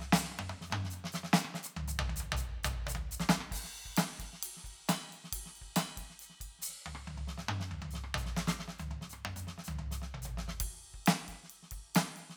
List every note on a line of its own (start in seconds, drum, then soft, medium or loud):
0.01 snare soft
0.13 snare loud
0.13 hi-hat pedal loud
0.24 snare medium
0.32 cross-stick medium
0.40 high tom loud
0.50 high tom medium
0.62 snare medium
0.66 hi-hat pedal soft
0.71 snare soft
0.71 high tom loud
0.85 snare soft
0.91 hi-hat pedal medium
0.91 high tom soft
1.05 snare medium
1.13 snare medium
1.13 hi-hat pedal medium
1.24 snare medium
1.34 snare loud
1.34 hi-hat pedal medium
1.45 cross-stick medium
1.55 snare medium
1.64 cross-stick soft
1.64 hi-hat pedal loud
1.77 mid tom loud
1.88 hi-hat pedal loud
1.88 mid tom medium
2.00 floor tom loud
2.10 mid tom medium
2.17 hi-hat pedal loud
2.21 mid tom medium
2.33 floor tom loud
2.37 hi-hat pedal medium
2.64 hi-hat pedal loud
2.64 floor tom loud
2.87 hi-hat pedal loud
2.87 floor tom loud
2.96 mid tom medium
3.12 hi-hat pedal loud
3.20 snare loud
3.30 snare loud
3.30 hi-hat pedal medium
3.41 cross-stick medium
3.52 kick soft
3.52 hi-hat pedal loud
3.52 crash medium
3.64 kick soft
3.64 snare soft
3.75 kick soft
3.86 kick soft
3.91 kick soft
3.97 snare loud
3.97 hi-hat pedal medium
3.97 ride loud
4.07 snare soft
4.20 kick soft
4.20 ride medium
4.26 kick soft
4.34 snare soft
4.43 hi-hat pedal medium
4.43 ride loud
4.57 snare soft
4.65 kick soft
4.65 ride soft
4.70 kick soft
4.89 snare loud
4.89 hi-hat pedal medium
4.89 ride bell loud
5.13 ride soft
5.25 snare soft
5.33 kick soft
5.33 hi-hat pedal medium
5.33 ride loud
5.39 kick soft
5.46 snare soft
5.56 ride soft
5.62 kick soft
5.67 kick soft
5.77 snare loud
5.77 hi-hat pedal medium
5.77 ride bell loud
5.98 kick soft
5.98 ride medium
6.03 kick soft
6.10 snare soft
6.20 hi-hat pedal medium
6.20 ride medium
6.30 snare soft
6.41 kick soft
6.41 snare soft
6.41 ride bell medium
6.59 snare soft
6.59 hi-hat pedal loud
6.64 ride bell medium
6.69 snare soft
6.73 snare soft
6.87 mid tom medium
6.96 cross-stick medium
7.08 mid tom medium
7.28 snare medium
7.38 snare medium
7.49 high tom loud
7.61 snare medium
7.72 mid tom medium
7.83 mid tom medium
7.91 snare medium
7.91 hi-hat pedal medium
8.05 cross-stick medium
8.15 hi-hat pedal medium
8.15 floor tom loud
8.26 snare medium
8.37 snare loud
8.48 snare loud
8.48 hi-hat pedal medium
8.60 snare medium
8.69 snare medium
8.79 hi-hat pedal soft
8.79 mid tom medium
8.92 mid tom medium
9.02 snare medium
9.10 cross-stick medium
9.10 hi-hat pedal medium
9.26 high tom loud
9.37 hi-hat pedal medium
9.37 high tom medium
9.48 snare medium
9.59 snare soft
9.65 hi-hat pedal medium
9.69 mid tom loud
9.79 mid tom medium
9.92 snare medium
9.92 hi-hat pedal medium
10.03 snare soft
10.15 floor tom medium
10.23 floor tom medium
10.23 hi-hat pedal medium
10.38 snare medium
10.49 snare medium
10.61 kick medium
10.61 ride loud
10.79 kick soft
10.94 kick soft
11.07 snare loud
11.07 ride loud
11.29 kick soft
11.29 ride soft
11.44 snare soft
11.50 hi-hat pedal soft
11.50 ride medium
11.63 snare soft
11.72 kick soft
11.72 ride medium
11.95 snare loud
11.95 hi-hat pedal medium
11.95 ride loud
12.17 ride soft
12.30 snare soft